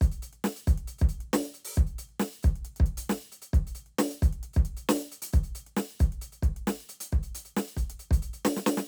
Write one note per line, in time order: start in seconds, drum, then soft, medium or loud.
0.01 closed hi-hat medium
0.01 kick loud
0.12 closed hi-hat medium
0.22 closed hi-hat medium
0.33 closed hi-hat soft
0.44 snare loud
0.56 closed hi-hat medium
0.67 closed hi-hat medium
0.67 kick loud
0.78 closed hi-hat soft
0.87 closed hi-hat medium
0.98 closed hi-hat medium
0.98 kick loud
1.09 closed hi-hat medium
1.20 closed hi-hat soft
1.33 snare loud
1.44 closed hi-hat soft
1.54 closed hi-hat medium
1.65 open hi-hat loud
1.74 kick loud
1.74 closed hi-hat medium
1.74 hi-hat pedal soft
1.87 closed hi-hat soft
1.98 closed hi-hat medium
2.09 closed hi-hat soft
2.20 snare loud
2.33 closed hi-hat soft
2.44 kick loud
2.56 closed hi-hat soft
2.65 closed hi-hat medium
2.76 kick loud
2.76 closed hi-hat medium
2.86 closed hi-hat medium
2.97 closed hi-hat loud
3.09 snare loud
3.21 closed hi-hat soft
3.32 closed hi-hat medium
3.53 kick loud
3.53 closed hi-hat medium
3.67 closed hi-hat soft
3.75 closed hi-hat medium
3.86 closed hi-hat soft
3.99 snare loud
4.11 closed hi-hat medium
4.22 closed hi-hat medium
4.22 kick loud
4.33 closed hi-hat soft
4.43 closed hi-hat medium
4.53 closed hi-hat medium
4.53 kick loud
4.65 closed hi-hat medium
4.77 closed hi-hat medium
4.89 snare loud
5.01 closed hi-hat soft
5.12 closed hi-hat medium
5.22 closed hi-hat loud
5.33 closed hi-hat medium
5.33 kick loud
5.43 closed hi-hat soft
5.55 closed hi-hat medium
5.67 closed hi-hat soft
5.77 snare loud
5.91 closed hi-hat soft
5.99 closed hi-hat medium
5.99 kick loud
6.12 closed hi-hat soft
6.21 closed hi-hat medium
6.32 closed hi-hat medium
6.43 kick loud
6.43 closed hi-hat medium
6.56 closed hi-hat soft
6.67 snare loud
6.80 closed hi-hat soft
6.89 closed hi-hat medium
7.00 closed hi-hat loud
7.12 kick loud
7.12 closed hi-hat soft
7.23 closed hi-hat soft
7.35 closed hi-hat loud
7.45 closed hi-hat medium
7.57 snare loud
7.67 closed hi-hat soft
7.77 closed hi-hat medium
7.77 kick medium
7.90 closed hi-hat medium
7.99 closed hi-hat medium
8.11 closed hi-hat medium
8.11 kick loud
8.22 closed hi-hat medium
8.33 closed hi-hat medium
8.45 snare loud
8.57 snare loud
8.66 snare loud
8.77 snare loud